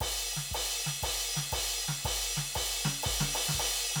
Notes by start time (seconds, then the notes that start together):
0.01 kick, crash
0.37 snare
0.52 kick, crash
0.57 kick
0.87 snare
1.03 kick, crash
1.37 snare
1.53 kick, crash
1.89 snare
2.05 kick, crash
2.38 snare
2.55 kick, crash
2.85 snare
3.03 kick, crash
3.21 snare
3.35 crash
3.49 snare
3.55 kick
3.59 kick, crash
3.96 snare